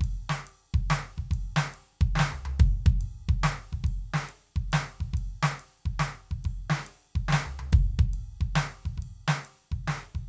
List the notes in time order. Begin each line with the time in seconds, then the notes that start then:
0.01 kick, ride
0.30 snare
0.47 ride
0.74 kick
0.90 snare, ride
1.18 kick
1.31 kick, ride
1.57 snare
1.74 ride
2.01 kick
2.16 snare
2.19 snare
2.32 floor tom
2.46 floor tom
2.60 kick, ride
2.86 kick
3.01 ride
3.29 kick
3.44 snare, ride
3.73 kick
3.84 kick, ride
4.14 snare
4.29 ride
4.56 kick
4.73 snare, ride
5.01 kick
5.14 kick, ride
5.43 snare
5.60 ride
5.86 kick
5.94 kick
6.00 snare, ride
6.31 kick
6.45 kick, ride
6.70 snare
6.87 ride
7.16 kick
7.29 snare
7.33 snare
7.46 floor tom
7.59 floor tom
7.73 kick, ride
7.99 kick
8.14 ride
8.41 kick
8.56 snare, ride
8.86 kick
8.98 kick
9.03 ride
9.28 snare
9.45 ride
9.72 kick
9.81 kick
9.88 snare, ride
10.15 kick